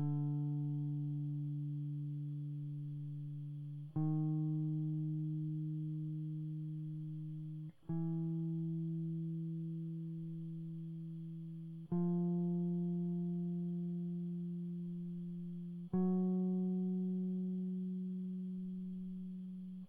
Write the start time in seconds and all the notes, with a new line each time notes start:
0.00 D3
3.97 D#3
7.90 E3
11.93 F3
15.94 F#3